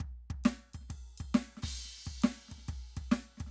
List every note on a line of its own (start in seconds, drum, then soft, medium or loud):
0.00 kick medium
0.30 kick medium
0.44 snare soft
0.44 snare loud
0.44 ride soft
0.44 floor tom soft
0.74 kick soft
0.74 ride bell soft
0.81 snare soft
0.89 kick medium
0.89 snare soft
0.89 ride medium
0.92 snare soft
0.95 snare soft
1.18 kick medium
1.18 ride bell medium
1.35 snare loud
1.35 ride medium
1.57 snare soft
1.62 kick medium
1.62 snare soft
1.62 crash loud
1.68 snare soft
1.73 snare soft
1.78 snare soft
1.85 snare soft
1.97 snare soft
2.06 kick medium
2.06 ride medium
2.22 snare loud
2.22 ride medium
2.49 kick soft
2.49 snare soft
2.49 ride medium
2.58 snare soft
2.61 snare soft
2.65 snare soft
2.67 kick medium
2.67 snare soft
2.67 ride medium
2.71 snare soft
2.97 kick medium
2.97 ride medium
3.12 snare loud
3.12 ride soft
3.37 kick medium
3.37 snare soft
3.37 ride medium
3.47 snare soft